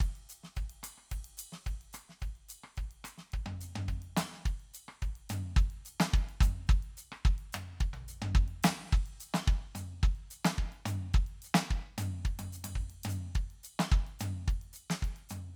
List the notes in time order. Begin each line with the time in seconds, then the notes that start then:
0.01 kick, hi-hat pedal, ride
0.16 ride
0.30 hi-hat pedal, ride
0.44 snare
0.56 kick, hi-hat pedal, ride bell
0.70 ride
0.84 cross-stick, hi-hat pedal, ride bell
0.98 cross-stick
1.10 kick, hi-hat pedal, ride
1.25 ride
1.38 hi-hat pedal, ride bell
1.53 snare
1.65 kick, hi-hat pedal, ride
1.82 ride
1.94 cross-stick, hi-hat pedal, ride bell
2.10 snare
2.20 kick, hi-hat pedal, ride
2.36 ride
2.49 hi-hat pedal, ride bell
2.64 cross-stick
2.76 kick, hi-hat pedal, ride
2.92 ride
3.05 cross-stick, hi-hat pedal, ride bell
3.18 snare
3.33 kick, ride
3.47 high tom
3.61 hi-hat pedal, ride
3.76 high tom
3.89 kick, hi-hat pedal, ride
4.03 ride
4.17 snare, hi-hat pedal, ride bell
4.33 snare
4.46 kick, snare, hi-hat pedal, ride
4.60 ride
4.74 hi-hat pedal, ride bell
4.89 cross-stick
5.02 kick, hi-hat pedal, ride
5.16 ride
5.30 hi-hat pedal, high tom, ride bell
5.57 kick, hi-hat pedal, ride
5.71 ride
5.86 hi-hat pedal, ride
6.01 snare
6.14 kick, ride
6.30 ride
6.41 kick, hi-hat pedal, high tom, ride bell
6.68 kick, hi-hat pedal, ride
6.83 ride
6.98 hi-hat pedal, ride bell
7.13 cross-stick
7.26 kick, ride
7.39 ride
7.46 kick
7.53 hi-hat pedal, high tom, ride bell
7.81 kick, ride
7.94 floor tom, ride
8.09 hi-hat pedal, ride
8.22 high tom
8.36 kick, ride
8.49 ride
8.63 snare, hi-hat pedal, ride
8.93 kick, ride
9.06 ride
9.21 hi-hat pedal, ride bell
9.35 snare
9.48 kick, ride
9.76 hi-hat pedal, high tom, ride bell
10.04 kick, ride
10.16 ride
10.31 hi-hat pedal, ride bell
10.45 snare
10.59 kick
10.73 ride
10.86 hi-hat pedal, high tom, ride bell
11.14 kick, ride
11.27 ride
11.43 hi-hat pedal, ride bell
11.55 snare
11.71 kick, hi-hat pedal
11.99 hi-hat pedal, high tom, ride bell
12.26 kick, ride
12.40 high tom, ride bell
12.53 hi-hat pedal
12.65 high tom, ride bell
12.76 kick, hi-hat pedal
12.91 ride
13.04 high tom, ride bell
13.09 hi-hat pedal
13.36 kick, ride
13.51 ride
13.64 hi-hat pedal, ride bell
13.80 snare
13.92 kick, ride
14.07 ride
14.20 hi-hat pedal, high tom, ride bell
14.48 kick, ride
14.62 ride
14.74 hi-hat pedal, ride bell
14.91 snare
15.03 kick, ride
15.17 ride
15.30 hi-hat pedal, high tom, ride bell